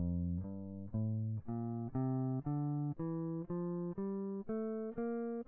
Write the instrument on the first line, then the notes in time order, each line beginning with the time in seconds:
electric guitar
0.00 F2
0.46 G2
0.97 A2
1.51 A#2
1.97 C3
2.48 D3
3.01 E3
3.52 F3
3.99 G3
4.50 A3
4.99 A#3